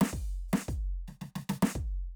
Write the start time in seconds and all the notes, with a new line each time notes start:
0.01 snare
0.13 open hi-hat, kick
0.49 hi-hat pedal
0.54 snare
0.69 open hi-hat, kick
1.08 snare, hi-hat pedal
1.22 snare
1.36 snare
1.50 snare
1.63 snare
1.76 kick